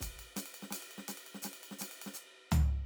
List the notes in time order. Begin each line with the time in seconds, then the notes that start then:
0.01 kick, hi-hat pedal, ride
0.19 ride
0.37 snare, hi-hat pedal, ride
0.46 ride
0.55 ride
0.63 snare
0.71 snare, hi-hat pedal, ride
0.83 ride
0.91 ride
0.98 snare
1.08 snare, hi-hat pedal, ride
1.18 ride
1.27 ride
1.35 snare
1.42 snare, hi-hat pedal, ride
1.54 ride
1.64 ride
1.71 snare
1.79 snare, hi-hat pedal, ride
1.92 ride
2.02 ride
2.06 snare
2.14 hi-hat pedal
2.52 floor tom, hi-hat pedal